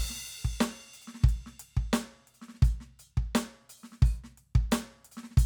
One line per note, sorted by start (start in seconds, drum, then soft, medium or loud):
0.10 snare soft
0.15 snare soft
0.27 closed hi-hat medium
0.45 kick medium
0.45 snare soft
0.61 closed hi-hat medium
0.61 snare loud
0.94 closed hi-hat medium
1.02 closed hi-hat soft
1.08 snare soft
1.14 snare soft
1.20 kick loud
1.20 snare soft
1.29 closed hi-hat medium
1.46 snare soft
1.60 closed hi-hat medium
1.77 kick medium
1.93 closed hi-hat loud
1.93 snare loud
2.27 closed hi-hat soft
2.34 closed hi-hat soft
2.42 snare soft
2.49 snare soft
2.54 snare soft
2.62 closed hi-hat medium
2.62 kick loud
2.81 snare soft
2.99 closed hi-hat medium
3.17 kick medium
3.35 closed hi-hat loud
3.35 snare loud
3.70 closed hi-hat medium
3.77 open hi-hat soft
3.84 snare soft
3.92 snare soft
4.02 open hi-hat medium
4.02 kick loud
4.12 hi-hat pedal soft
4.24 snare soft
4.38 closed hi-hat soft
4.55 kick loud
4.72 closed hi-hat loud
4.72 snare loud
5.05 closed hi-hat medium
5.12 closed hi-hat soft
5.17 snare medium
5.23 snare soft
5.31 snare soft
5.37 closed hi-hat loud
5.37 kick loud